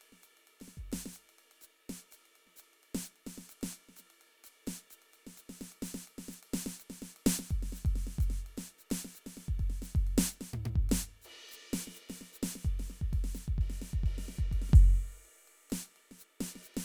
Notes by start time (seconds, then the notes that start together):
0.01 ride
0.12 snare
0.21 hi-hat pedal, ride
0.37 ride
0.60 snare, ride
0.67 snare
0.77 kick
0.92 snare, ride
1.05 snare
1.12 hi-hat pedal, ride
1.29 ride
1.38 ride
1.51 ride
1.61 hi-hat pedal
1.89 snare, ride
2.11 hi-hat pedal, ride
2.25 ride
2.46 snare
2.56 hi-hat pedal, ride
2.73 ride
2.83 ride
2.94 snare
3.03 hi-hat pedal, ride
3.16 ride
3.24 snare, hi-hat pedal, ride
3.37 snare
3.49 hi-hat pedal, ride
3.61 snare, ride
3.72 ride
3.88 snare
3.96 snare, hi-hat pedal, ride
4.10 ride
4.21 ride
4.44 hi-hat pedal, ride
4.65 snare, hi-hat pedal, ride
4.90 hi-hat pedal, ride
5.02 ride
5.12 hi-hat pedal, ride
5.26 snare
5.36 hi-hat pedal, ride
5.49 snare
5.58 snare, hi-hat pedal
5.72 ride
5.82 snare, hi-hat pedal
5.94 snare
6.05 hi-hat pedal, ride
6.18 snare
6.30 hi-hat pedal
6.43 ride
6.52 snare, hi-hat pedal
6.66 snare
6.78 hi-hat pedal, ride
6.90 snare
7.00 snare, hi-hat pedal
7.16 ride
7.26 snare, hi-hat pedal
7.39 snare
7.47 kick, hi-hat pedal, ride
7.62 snare
7.72 snare, hi-hat pedal
7.85 kick, ride
7.95 snare
8.07 snare
8.18 kick, hi-hat pedal, ride
8.30 snare
8.46 ride
8.57 snare, ride
8.68 ride
8.78 hi-hat pedal
8.90 snare, ride
9.04 snare
9.14 hi-hat pedal, ride
9.26 snare, ride
9.37 snare, ride
9.48 kick
9.59 kick, ride
9.70 snare
9.82 snare, hi-hat pedal
9.95 kick, ride
10.07 ride
10.18 snare
10.30 hi-hat pedal, ride
10.41 snare
10.53 floor tom
10.65 floor tom
10.75 kick
10.89 snare, ride
11.21 hi-hat pedal, ride
11.49 hi-hat pedal, ride
11.71 snare, hi-hat pedal, ride
11.87 snare
11.94 hi-hat pedal, ride
12.09 snare, ride
12.21 snare, ride
12.33 hi-hat pedal
12.43 snare, ride
12.55 snare
12.65 kick, ride
12.79 snare, ride
12.90 snare, ride
13.01 kick
13.13 kick, ride
13.24 snare
13.34 snare, hi-hat pedal
13.48 kick
13.58 kick, ride
13.70 snare
13.81 snare
13.93 kick
14.03 kick, ride
14.18 snare
14.28 snare
14.38 kick
14.51 kick, ride
14.61 snare
14.69 snare
14.73 kick, snare, crash
15.25 ride
15.47 ride
15.70 snare, ride
15.85 ride
15.96 ride
16.11 snare
16.18 hi-hat pedal, ride
16.40 snare, ride
16.55 snare
16.62 hi-hat pedal, ride
16.74 snare, ride